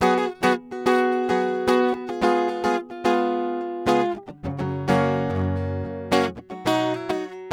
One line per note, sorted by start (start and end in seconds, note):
0.01 0.32 F#3
0.01 0.33 B3
0.01 0.19 F#4
0.01 0.16 G#4
0.19 0.36 F#4
0.19 0.35 G#4
0.44 0.58 D#3
0.44 0.61 F#3
0.44 0.64 B3
0.44 0.62 F#4
0.44 0.63 G#4
0.72 0.87 B3
0.72 0.87 F#4
0.72 0.87 G#4
0.87 1.03 F#3
0.87 1.31 B3
0.87 1.30 F#4
0.87 1.28 G#4
1.30 1.66 F#3
1.30 1.69 B3
1.30 1.68 F#4
1.30 1.68 G#4
1.69 1.90 F#3
1.69 1.93 B3
1.69 1.95 F#4
1.69 1.91 G#4
1.93 2.08 B3
1.93 2.09 F#4
2.10 2.21 B3
2.10 2.23 F4
2.10 2.25 G#4
2.23 2.33 G#3
2.23 2.49 B3
2.23 2.49 F4
2.23 2.49 G#4
2.49 2.66 B3
2.49 2.64 F4
2.49 2.64 G#4
2.65 2.85 G#3
2.65 2.86 B3
2.65 2.86 F4
2.65 2.85 G#4
2.91 3.01 B3
2.91 3.03 F4
2.91 3.05 G#4
3.05 3.85 G#3
3.05 3.61 B3
3.05 3.89 F4
3.05 3.89 G#4
3.62 3.89 B3
3.87 4.10 C#3
3.87 4.23 G#3
3.87 4.09 B3
3.87 4.17 F4
3.87 4.11 G#4
4.32 4.44 D3
4.44 4.57 F#2
4.44 4.60 C#3
4.44 4.59 F#3
4.44 4.60 C#4
4.59 4.85 F#2
4.59 4.91 C#3
4.59 4.91 F#3
4.59 4.73 C#4
4.59 4.88 F#4
4.89 5.21 F#2
4.89 5.29 C#3
4.89 5.58 F#3
4.89 5.58 A#3
4.89 6.13 C#4
4.89 6.12 F#4
5.30 5.85 F#2
5.30 5.84 C#3
5.58 6.13 A#3
5.86 6.32 F#2
5.86 6.03 C#3
6.12 6.32 C#3
6.12 6.31 F#3
6.12 6.32 A#3
6.12 6.34 C#4
6.12 6.35 F#4
6.37 6.51 F#3
6.37 6.50 F#4
6.51 6.65 F#3
6.51 6.68 F#4
6.67 7.01 B2
6.67 7.10 F#3
6.67 6.95 D#4
6.67 6.99 F#4
6.95 7.10 E4
7.10 7.50 F#3
7.10 7.32 D#4
7.10 7.37 F#4